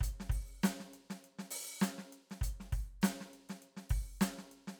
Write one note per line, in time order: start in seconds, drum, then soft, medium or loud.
0.01 closed hi-hat medium
0.01 kick medium
0.20 snare soft
0.30 kick medium
0.30 open hi-hat medium
0.64 closed hi-hat medium
0.64 snare loud
0.64 hi-hat pedal medium
0.80 snare soft
0.94 closed hi-hat soft
1.10 snare medium
1.10 closed hi-hat soft
1.25 closed hi-hat soft
1.39 snare soft
1.51 open hi-hat loud
1.81 closed hi-hat medium
1.81 snare medium
1.81 hi-hat pedal medium
1.99 snare soft
2.13 closed hi-hat soft
2.30 snare soft
2.30 closed hi-hat soft
2.42 closed hi-hat medium
2.42 kick medium
2.60 snare soft
2.73 kick medium
2.73 open hi-hat medium
3.02 closed hi-hat medium
3.02 snare loud
3.02 hi-hat pedal medium
3.21 snare soft
3.34 closed hi-hat soft
3.49 snare soft
3.49 closed hi-hat soft
3.62 closed hi-hat soft
3.77 snare soft
3.90 kick medium
3.90 open hi-hat medium
4.21 closed hi-hat medium
4.21 snare loud
4.21 hi-hat pedal medium
4.39 snare soft
4.52 closed hi-hat soft
4.68 snare soft